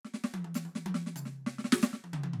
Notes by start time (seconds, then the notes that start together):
0.06 snare
0.14 snare
0.24 snare
0.34 high tom
0.45 high tom
0.55 snare, percussion
0.66 high tom
0.76 snare
0.86 high tom
0.95 snare
1.07 snare
1.16 mid tom, percussion
1.26 snare
1.47 snare
1.59 snare
1.65 snare
1.73 snare
1.82 snare, percussion
1.94 snare
2.04 high tom
2.14 mid tom
2.24 high tom
2.34 floor tom